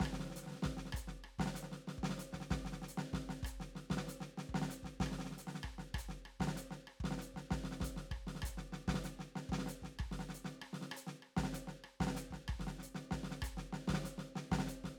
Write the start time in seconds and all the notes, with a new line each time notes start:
0.01 kick, snare
0.06 cross-stick
0.14 snare
0.20 snare
0.25 snare
0.31 snare
0.36 snare, hi-hat pedal
0.43 snare
0.47 snare
0.51 snare
0.56 snare
0.63 kick, snare
0.78 snare
0.86 snare
0.93 kick, cross-stick, hi-hat pedal
1.08 snare
1.25 cross-stick
1.39 kick, snare
1.47 snare
1.55 snare, hi-hat pedal
1.64 snare
1.72 snare
1.88 snare
1.99 kick
2.04 snare
2.10 snare
2.19 snare, hi-hat pedal
2.34 kick, snare
2.41 snare
2.51 kick, snare
2.66 snare
2.73 snare
2.83 snare
2.89 hi-hat pedal
2.98 snare
3.14 kick, snare
3.30 snare
3.44 kick, cross-stick, hi-hat pedal
3.61 snare
3.76 snare
3.91 kick, snare
3.98 snare
4.08 snare, hi-hat pedal
4.21 snare
4.38 snare
4.50 kick
4.55 snare
4.62 snare
4.70 snare, hi-hat pedal
4.84 kick, snare
5.01 kick, snare
5.07 cross-stick
5.12 snare
5.20 snare
5.25 snare
5.32 snare
5.38 snare, hi-hat pedal
5.48 snare
5.55 snare
5.64 kick, cross-stick
5.79 snare
5.95 kick, cross-stick
5.99 hi-hat pedal
6.10 snare
6.26 cross-stick
6.41 kick, snare
6.48 snare
6.57 snare, hi-hat pedal
6.72 snare
6.88 cross-stick
7.01 kick, snare
7.12 snare
7.19 snare, hi-hat pedal
7.35 kick, snare
7.52 kick, snare
7.58 kick
7.64 snare
7.72 snare
7.81 kick, snare
7.85 hi-hat pedal
7.97 snare
8.12 kick, cross-stick
8.28 snare
8.36 snare
8.43 kick, cross-stick, hi-hat pedal
8.58 snare
8.73 snare
8.89 kick, snare
8.94 kick, snare
9.05 snare, hi-hat pedal
9.20 snare
9.36 snare
9.50 kick, snare
9.59 snare
9.67 snare, hi-hat pedal
9.83 kick, snare
10.00 kick, cross-stick
10.12 snare
10.20 snare
10.30 snare
10.35 hi-hat pedal
10.45 snare
10.62 cross-stick
10.74 snare
10.82 snare
10.92 cross-stick
10.97 hi-hat pedal
11.08 snare
11.23 cross-stick
11.38 kick, snare
11.44 snare
11.54 snare, hi-hat pedal
11.68 snare
11.85 cross-stick
12.01 kick, snare
12.08 snare
12.16 snare, hi-hat pedal
12.31 kick, snare
12.49 kick, cross-stick
12.60 snare
12.68 snare
12.79 snare
12.84 hi-hat pedal
12.96 snare
13.12 kick, snare
13.24 snare
13.32 snare
13.43 kick, cross-stick, hi-hat pedal
13.58 snare
13.74 snare
13.89 kick, snare
13.94 snare
14.04 snare, hi-hat pedal
14.19 snare
14.36 snare
14.52 kick, snare
14.60 snare
14.67 snare, hi-hat pedal
14.85 kick, snare